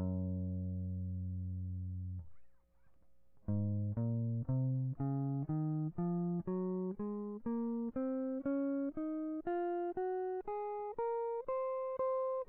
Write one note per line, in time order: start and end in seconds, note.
0.00 2.25 F#2
3.50 3.97 G#2
3.99 4.47 A#2
4.51 4.96 C3
5.01 5.47 C#3
5.50 5.92 D#3
5.99 6.44 F3
6.49 6.96 F#3
7.00 7.41 G#3
7.47 7.92 A#3
7.97 8.44 C4
8.46 8.92 C#4
8.98 9.44 D#4
9.47 9.94 F4
9.97 10.43 F#4
10.48 10.95 G#4
10.99 11.46 A#4
11.49 12.00 C5
12.00 12.45 C5